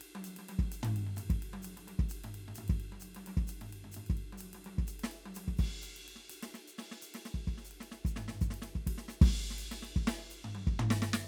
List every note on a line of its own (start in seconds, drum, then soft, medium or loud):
0.01 ride medium
0.15 high tom medium
0.24 hi-hat pedal medium
0.24 ride medium
0.36 high tom medium
0.36 ride medium
0.49 high tom medium
0.49 ride medium
0.59 kick medium
0.71 hi-hat pedal medium
0.71 ride medium
0.83 floor tom loud
0.83 ride medium
0.96 ride medium
1.07 floor tom soft
1.16 floor tom medium
1.16 hi-hat pedal medium
1.16 ride medium
1.30 kick medium
1.30 ride soft
1.42 ride medium
1.53 high tom medium
1.62 hi-hat pedal medium
1.62 ride medium
1.77 high tom soft
1.77 ride medium
1.88 high tom medium
1.88 ride medium
1.99 kick medium
2.09 hi-hat pedal medium
2.09 ride medium
2.24 floor tom medium
2.24 ride soft
2.34 ride medium
2.48 floor tom medium
2.55 floor tom medium
2.55 hi-hat pedal medium
2.55 ride medium
2.68 kick medium
2.68 ride soft
2.75 hi-hat pedal soft
2.80 ride soft
2.92 high tom medium
3.00 hi-hat pedal medium
3.00 ride medium
3.15 high tom medium
3.15 ride medium
3.21 hi-hat pedal soft
3.26 high tom medium
3.26 ride medium
3.37 kick medium
3.47 hi-hat pedal medium
3.47 ride medium
3.61 floor tom medium
3.61 ride soft
3.68 hi-hat pedal soft
3.73 ride medium
3.84 floor tom soft
3.92 hi-hat pedal medium
3.92 ride medium
3.96 floor tom medium
4.06 kick medium
4.06 ride soft
4.12 hi-hat pedal soft
4.17 ride soft
4.33 high tom medium
4.37 hi-hat pedal medium
4.37 ride medium
4.53 high tom medium
4.53 ride medium
4.64 high tom medium
4.64 ride soft
4.78 kick medium
4.87 hi-hat pedal medium
4.87 ride medium
4.99 ride medium
5.04 snare medium
5.08 hi-hat pedal soft
5.08 ride soft
5.26 high tom medium
5.34 hi-hat pedal medium
5.34 high tom medium
5.34 ride medium
5.48 kick medium
5.57 kick medium
5.57 hi-hat pedal soft
5.57 ride medium
5.82 hi-hat pedal medium
5.82 ride soft
5.96 ride medium
6.08 ride medium
6.16 snare soft
6.30 hi-hat pedal medium
6.30 ride medium
6.43 snare medium
6.43 ride medium
6.54 snare soft
6.54 ride soft
6.67 hi-hat pedal medium
6.78 snare medium
6.78 ride medium
6.91 snare soft
7.02 hi-hat pedal medium
7.02 ride medium
7.14 snare soft
7.14 ride medium
7.25 snare soft
7.25 ride soft
7.34 kick medium
7.47 kick medium
7.47 ride soft
7.57 snare soft
7.65 hi-hat pedal medium
7.71 ride soft
7.80 snare soft
7.80 ride soft
7.91 snare soft
7.91 ride soft
8.05 kick medium
8.05 hi-hat pedal medium
8.16 snare medium
8.16 floor tom medium
8.28 snare medium
8.28 floor tom medium
8.41 kick medium
8.41 hi-hat pedal medium
8.50 snare soft
8.50 ride medium
8.62 snare medium
8.62 ride soft
8.75 kick medium
8.87 kick medium
8.87 ride medium
8.98 snare soft
9.08 snare soft
9.08 hi-hat pedal medium
9.21 kick loud
9.21 ride loud
9.50 snare soft
9.58 hi-hat pedal medium
9.58 ride medium
9.71 snare medium
9.71 ride medium
9.82 snare soft
9.82 ride soft
9.96 kick medium
10.07 snare loud
10.07 ride medium
10.18 snare soft
10.21 snare soft
10.23 snare soft
10.30 hi-hat pedal medium
10.30 ride soft
10.44 floor tom medium
10.55 high tom medium
10.67 kick medium
10.79 floor tom loud
10.90 snare loud
11.02 snare medium
11.13 snare loud